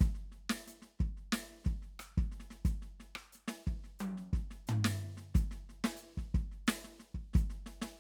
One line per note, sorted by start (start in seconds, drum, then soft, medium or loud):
0.01 kick medium
0.01 snare soft
0.01 hi-hat pedal medium
0.15 snare soft
0.32 snare soft
0.50 snare medium
0.68 snare soft
0.68 hi-hat pedal medium
0.83 snare soft
1.00 kick medium
1.00 snare soft
1.18 snare soft
1.33 snare loud
1.33 hi-hat pedal medium
1.53 snare soft
1.65 kick medium
1.65 snare soft
1.83 snare soft
2.00 cross-stick medium
2.00 hi-hat pedal medium
2.18 kick medium
2.18 snare soft
2.32 snare soft
2.40 snare soft
2.51 snare soft
2.66 kick medium
2.66 snare soft
2.66 hi-hat pedal medium
2.83 snare soft
3.00 snare soft
3.16 cross-stick medium
3.33 snare soft
3.33 hi-hat pedal medium
3.48 snare medium
3.67 kick medium
3.67 snare soft
3.84 snare soft
4.00 hi-hat pedal medium
4.00 high tom loud
4.18 snare soft
4.34 kick medium
4.34 snare soft
4.51 snare soft
4.68 floor tom loud
4.68 hi-hat pedal medium
4.85 snare loud
5.02 snare soft
5.18 snare soft
5.35 kick medium
5.35 snare soft
5.35 hi-hat pedal medium
5.52 snare soft
5.70 snare soft
5.85 snare loud
5.97 hi-hat pedal medium
6.03 snare soft
6.18 kick soft
6.18 snare soft
6.35 kick medium
6.35 snare soft
6.52 snare soft
6.68 snare loud
6.68 hi-hat pedal medium
6.85 snare soft
7.00 snare soft
7.15 kick soft
7.34 kick medium
7.34 snare soft
7.34 hi-hat pedal medium
7.50 snare soft
7.67 snare soft
7.82 snare medium